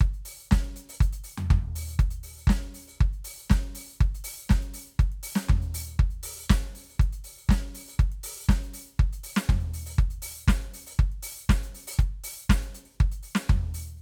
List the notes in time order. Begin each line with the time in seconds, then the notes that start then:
0.01 kick, closed hi-hat
0.14 closed hi-hat
0.25 open hi-hat
0.38 open hi-hat
0.47 hi-hat pedal
0.51 kick, snare
0.65 closed hi-hat
0.76 open hi-hat
0.89 open hi-hat
0.95 hi-hat pedal
1.01 closed hi-hat, kick
1.13 closed hi-hat
1.24 open hi-hat
1.38 floor tom
1.44 hi-hat pedal
1.51 kick, floor tom
1.76 open hi-hat
1.88 open hi-hat
1.93 hi-hat pedal
1.99 kick, closed hi-hat
2.11 closed hi-hat
2.23 open hi-hat
2.38 open hi-hat
2.43 hi-hat pedal
2.47 kick, snare
2.63 closed hi-hat
2.74 open hi-hat
2.88 open hi-hat
2.96 hi-hat pedal
3.01 kick, closed hi-hat
3.13 closed hi-hat
3.25 open hi-hat
3.38 open hi-hat
3.46 snare, hi-hat pedal
3.51 kick
3.64 closed hi-hat
3.75 open hi-hat
3.90 open hi-hat
3.96 hi-hat pedal
4.01 kick, closed hi-hat
4.15 closed hi-hat
4.24 open hi-hat
4.38 open hi-hat
4.47 snare, hi-hat pedal
4.51 kick
4.62 closed hi-hat
4.74 open hi-hat
4.89 open hi-hat
4.94 hi-hat pedal
4.99 kick, closed hi-hat
5.12 closed hi-hat
5.23 open hi-hat
5.36 snare
5.46 kick, floor tom, hi-hat pedal
5.62 closed hi-hat
5.74 open hi-hat
5.87 open hi-hat
5.95 hi-hat pedal
5.99 kick, closed hi-hat
6.11 closed hi-hat
6.23 open hi-hat
6.38 open hi-hat
6.44 hi-hat pedal
6.50 kick, snare
6.75 open hi-hat
6.89 open hi-hat
6.95 hi-hat pedal
7.00 kick, closed hi-hat
7.13 closed hi-hat
7.24 open hi-hat
7.37 open hi-hat
7.49 kick, snare
7.63 closed hi-hat
7.75 open hi-hat
7.88 open hi-hat
7.94 hi-hat pedal
7.99 kick, closed hi-hat
8.12 closed hi-hat
8.24 open hi-hat
8.38 open hi-hat
8.44 hi-hat pedal
8.49 kick, snare
8.64 closed hi-hat
8.74 open hi-hat
8.88 open hi-hat
8.96 kick, hi-hat pedal
9.02 closed hi-hat
9.13 closed hi-hat
9.24 open hi-hat
9.37 snare
9.44 hi-hat pedal
9.49 kick, floor tom
9.60 closed hi-hat
9.74 open hi-hat
9.86 open hi-hat
9.94 hi-hat pedal
9.99 kick, closed hi-hat
10.11 closed hi-hat
10.22 open hi-hat
10.34 open hi-hat
10.44 hi-hat pedal
10.48 kick, snare
10.62 closed hi-hat
10.74 open hi-hat
10.87 open hi-hat
10.93 hi-hat pedal
10.99 kick, closed hi-hat
11.12 closed hi-hat
11.23 open hi-hat
11.38 open hi-hat
11.44 hi-hat pedal
11.49 kick, snare
11.63 closed hi-hat
11.75 open hi-hat
11.88 open hi-hat
11.93 hi-hat pedal
11.99 kick, closed hi-hat
12.24 open hi-hat
12.38 open hi-hat
12.44 hi-hat pedal
12.50 kick, snare
12.62 closed hi-hat
12.75 open hi-hat
12.86 open hi-hat
12.94 hi-hat pedal
13.00 kick, closed hi-hat
13.12 closed hi-hat
13.23 open hi-hat
13.35 snare
13.43 hi-hat pedal
13.50 kick, floor tom
13.74 open hi-hat
13.96 hi-hat pedal